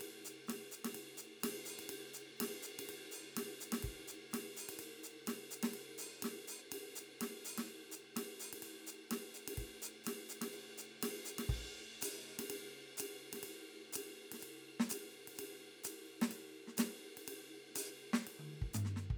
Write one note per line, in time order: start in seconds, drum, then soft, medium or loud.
0.01 ride medium
0.25 hi-hat pedal medium
0.47 snare soft
0.47 hi-hat pedal soft
0.47 ride medium
0.72 hi-hat pedal medium
0.85 snare soft
0.85 ride medium
0.93 hi-hat pedal soft
0.93 ride medium
1.17 hi-hat pedal medium
1.40 snare medium
1.40 hi-hat pedal soft
1.40 ride loud
1.66 hi-hat pedal medium
1.79 ride medium
1.88 hi-hat pedal soft
1.88 ride medium
2.14 hi-hat pedal medium
2.37 hi-hat pedal soft
2.37 ride loud
2.42 snare soft
2.63 hi-hat pedal medium
2.79 ride medium
2.86 hi-hat pedal soft
2.86 ride medium
3.12 hi-hat pedal medium
3.35 snare soft
3.35 hi-hat pedal soft
3.35 ride loud
3.61 hi-hat pedal medium
3.72 snare medium
3.72 ride loud
3.83 kick soft
3.83 hi-hat pedal soft
3.83 ride medium
4.08 hi-hat pedal medium
4.31 snare soft
4.31 hi-hat pedal soft
4.31 ride loud
4.57 hi-hat pedal medium
4.69 ride medium
4.79 hi-hat pedal soft
4.79 ride medium
5.04 hi-hat pedal medium
5.26 snare medium
5.26 hi-hat pedal soft
5.26 ride loud
5.51 hi-hat pedal medium
5.63 snare medium
5.63 ride loud
5.74 hi-hat pedal soft
5.74 ride medium
5.98 hi-hat pedal medium
6.23 snare soft
6.23 ride loud
6.48 hi-hat pedal medium
6.71 hi-hat pedal soft
6.71 ride loud
6.96 hi-hat pedal medium
7.19 snare soft
7.19 hi-hat pedal soft
7.19 ride loud
7.45 hi-hat pedal medium
7.58 snare medium
7.58 ride medium
7.68 hi-hat pedal soft
7.92 hi-hat pedal medium
8.15 snare soft
8.15 hi-hat pedal soft
8.15 ride loud
8.40 hi-hat pedal medium
8.53 ride medium
8.62 hi-hat pedal soft
8.62 ride medium
8.87 hi-hat pedal medium
9.10 snare medium
9.10 hi-hat pedal soft
9.10 ride loud
9.34 hi-hat pedal medium
9.48 ride loud
9.58 kick soft
9.58 hi-hat pedal soft
9.58 ride medium
9.82 hi-hat pedal loud
10.04 snare soft
10.04 hi-hat pedal soft
10.04 ride loud
10.29 hi-hat pedal medium
10.42 snare soft
10.42 ride loud
10.52 hi-hat pedal soft
10.52 ride soft
10.78 hi-hat pedal medium
11.01 snare soft
11.01 hi-hat pedal soft
11.01 ride loud
11.25 hi-hat pedal medium
11.39 snare soft
11.39 ride loud
11.49 kick soft
11.49 ride medium
12.01 hi-hat pedal loud
12.01 ride loud
12.39 snare soft
12.39 ride loud
12.50 ride loud
12.97 hi-hat pedal loud
12.97 ride loud
13.33 snare soft
13.33 ride medium
13.43 hi-hat pedal soft
13.43 ride medium
13.93 hi-hat pedal loud
13.93 ride loud
14.32 snare soft
14.32 ride medium
14.40 hi-hat pedal soft
14.40 ride medium
14.80 snare medium
14.89 hi-hat pedal loud
14.89 ride loud
15.11 hi-hat pedal soft
15.28 ride medium
15.35 hi-hat pedal soft
15.35 ride medium
15.84 hi-hat pedal loud
15.84 ride medium
16.05 hi-hat pedal soft
16.22 snare medium
16.22 ride medium
16.31 hi-hat pedal soft
16.31 ride medium
16.68 snare soft
16.77 snare medium
16.77 hi-hat pedal loud
16.77 ride loud
17.17 ride medium
17.26 hi-hat pedal soft
17.26 ride medium
17.71 snare soft
17.76 hi-hat pedal loud
17.76 ride loud
17.97 hi-hat pedal soft
18.14 snare medium
18.23 hi-hat pedal soft
18.27 ride medium
18.39 high tom soft
18.53 high tom soft
18.62 kick soft
18.74 floor tom medium
18.74 hi-hat pedal loud
18.85 snare soft
18.96 snare soft
19.10 kick soft